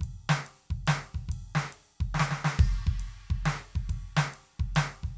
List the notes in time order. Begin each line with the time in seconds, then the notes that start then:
0.01 kick, ride
0.29 snare
0.47 ride
0.71 kick
0.87 snare, ride
1.15 kick
1.29 kick, ride
1.55 snare
1.73 ride
2.01 kick
2.15 snare
2.20 snare
2.31 snare
2.45 snare
2.59 kick, crash
2.87 kick
3.00 ride
3.30 kick
3.46 snare, ride
3.76 kick
3.89 kick, ride
4.17 snare
4.34 ride
4.60 kick
4.76 snare, ride
5.04 kick